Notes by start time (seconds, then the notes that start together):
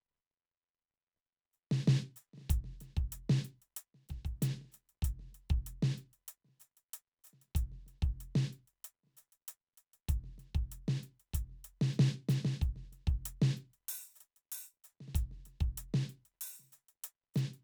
1.53 hi-hat pedal
1.71 snare
1.87 snare
2.16 hi-hat pedal
2.33 snare
2.38 snare
2.41 snare
2.49 closed hi-hat, kick
2.64 snare
2.80 snare, closed hi-hat
2.97 kick, closed hi-hat
3.12 closed hi-hat
3.29 snare
3.44 closed hi-hat
3.62 closed hi-hat
3.76 closed hi-hat
3.94 snare
4.09 kick, snare, closed hi-hat
4.25 kick, closed hi-hat
4.42 open hi-hat, snare
4.50 snare
4.61 snare
4.64 snare
4.72 closed hi-hat, hi-hat pedal
4.89 closed hi-hat
5.02 closed hi-hat, kick
5.19 snare
5.32 snare, closed hi-hat
5.49 kick, closed hi-hat
5.66 closed hi-hat
5.82 snare
5.98 closed hi-hat
6.13 closed hi-hat
6.28 open hi-hat
6.44 snare
6.48 snare
6.60 closed hi-hat, hi-hat pedal
6.77 closed hi-hat
6.93 open hi-hat
7.24 closed hi-hat, hi-hat pedal
7.33 snare
7.41 closed hi-hat
7.55 closed hi-hat, kick
7.72 snare
7.86 snare, closed hi-hat
8.02 kick, closed hi-hat
8.20 closed hi-hat
8.35 snare
8.53 closed hi-hat
8.67 closed hi-hat
8.84 open hi-hat
9.03 snare
9.07 snare
9.17 closed hi-hat, hi-hat pedal
9.32 closed hi-hat
9.48 closed hi-hat
9.77 closed hi-hat
9.93 closed hi-hat
10.09 closed hi-hat, kick
10.24 snare
10.38 snare, closed hi-hat
10.55 kick, closed hi-hat
10.72 closed hi-hat
10.88 snare
11.03 closed hi-hat
11.20 closed hi-hat
11.34 closed hi-hat, kick
11.49 snare
11.64 open hi-hat
11.81 snare
11.93 hi-hat pedal
11.99 snare
12.29 snare, hi-hat pedal
12.45 snare
12.61 kick, closed hi-hat
12.76 snare
12.92 snare, closed hi-hat
13.07 kick, closed hi-hat
13.25 closed hi-hat
13.42 snare
13.57 closed hi-hat
13.73 closed hi-hat
13.88 open hi-hat
14.15 hi-hat pedal
14.20 closed hi-hat
14.36 closed hi-hat
14.52 open hi-hat
14.84 hi-hat pedal
15.00 snare
15.08 snare
15.15 closed hi-hat, kick
15.31 snare
15.45 snare, closed hi-hat
15.60 kick, closed hi-hat
15.77 closed hi-hat
15.94 snare
16.09 closed hi-hat
16.25 closed hi-hat
16.41 open hi-hat
16.59 snare
16.63 snare
16.72 hi-hat pedal
16.88 closed hi-hat
17.04 open hi-hat
17.34 snare, closed hi-hat, hi-hat pedal
17.53 closed hi-hat